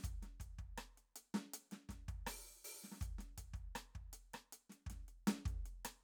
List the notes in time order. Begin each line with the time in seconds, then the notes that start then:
0.00 snare, hi-hat pedal
0.05 kick, closed hi-hat
0.23 snare, closed hi-hat
0.41 kick, closed hi-hat
0.59 kick, closed hi-hat
0.78 cross-stick, closed hi-hat
0.98 closed hi-hat
1.17 closed hi-hat
1.35 snare, closed hi-hat
1.54 closed hi-hat
1.72 snare, closed hi-hat
1.90 kick, snare, closed hi-hat
2.09 kick, closed hi-hat
2.27 open hi-hat, cross-stick
2.65 open hi-hat
2.85 snare
2.93 snare
2.98 kick, snare, hi-hat pedal
3.03 closed hi-hat
3.19 snare, closed hi-hat
3.38 kick, closed hi-hat
3.54 kick, closed hi-hat
3.76 cross-stick, closed hi-hat
3.96 kick, closed hi-hat
4.14 closed hi-hat
4.34 cross-stick, closed hi-hat
4.53 closed hi-hat
4.70 snare, closed hi-hat
4.87 kick, snare, closed hi-hat
5.09 closed hi-hat
5.28 snare, closed hi-hat
5.46 kick, closed hi-hat
5.66 closed hi-hat
5.86 cross-stick, closed hi-hat